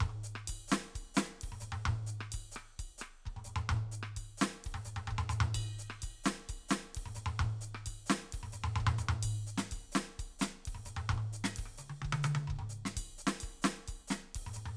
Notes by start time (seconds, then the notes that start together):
0.01 kick, mid tom
0.10 mid tom
0.24 hi-hat pedal
0.36 cross-stick
0.48 kick, ride bell
0.68 snare, hi-hat pedal
0.96 kick, ride bell
1.15 snare, hi-hat pedal
1.25 snare
1.42 kick, ride
1.49 kick, mid tom
1.61 hi-hat pedal, mid tom
1.72 mid tom
1.86 kick, mid tom
2.07 hi-hat pedal
2.21 cross-stick
2.32 kick, ride bell
2.52 hi-hat pedal
2.56 cross-stick
2.79 kick, ride bell
2.98 cross-stick, hi-hat pedal
3.26 kick, mid tom
3.37 mid tom
3.45 hi-hat pedal
3.56 mid tom
3.70 kick, mid tom
3.77 mid tom
3.92 hi-hat pedal
4.03 cross-stick
4.17 kick, ride bell
4.38 snare, hi-hat pedal
4.65 kick, ride
4.72 kick, mid tom
4.85 hi-hat pedal, mid tom
4.97 mid tom
5.08 kick, mid tom
5.19 mid tom
5.30 hi-hat pedal, mid tom
5.41 mid tom
5.55 kick, ride bell
5.79 hi-hat pedal
5.90 cross-stick
6.02 kick, ride bell
6.24 snare, hi-hat pedal
6.49 kick, ride bell
6.69 snare, hi-hat pedal
6.95 kick, ride
7.06 mid tom
7.15 hi-hat pedal, mid tom
7.26 mid tom
7.40 kick, mid tom
7.61 hi-hat pedal
7.75 cross-stick
7.86 kick, ride bell
8.06 snare, hi-hat pedal
8.33 kick, ride
8.43 mid tom
8.53 hi-hat pedal, mid tom
8.64 mid tom
8.76 mid tom
8.80 kick
8.87 mid tom
8.99 hi-hat pedal, mid tom
9.09 mid tom
9.23 kick, ride bell
9.47 hi-hat pedal
9.58 snare
9.72 kick, ride bell
9.78 kick
9.92 snare, hi-hat pedal
10.19 kick, ride bell
10.25 kick
10.40 snare, hi-hat pedal
10.66 kick, ride
10.73 kick, mid tom
10.86 hi-hat pedal, mid tom
10.97 mid tom
11.10 kick, mid tom
11.18 mid tom
11.33 hi-hat pedal
11.44 snare
11.57 kick, ride
11.65 kick, cross-stick
11.78 hi-hat pedal, high tom
11.90 high tom
12.02 kick, high tom
12.13 high tom
12.24 hi-hat pedal, high tom
12.35 high tom
12.48 kick, mid tom
12.56 kick, mid tom
12.70 hi-hat pedal
12.86 snare
12.97 kick, ride bell
13.06 kick
13.18 hi-hat pedal
13.27 snare
13.41 kick, ride bell
13.62 snare, hi-hat pedal
13.88 kick, ride bell
14.08 snare, hi-hat pedal
14.35 kick, ride
14.42 kick
14.47 mid tom
14.54 hi-hat pedal, mid tom
14.66 mid tom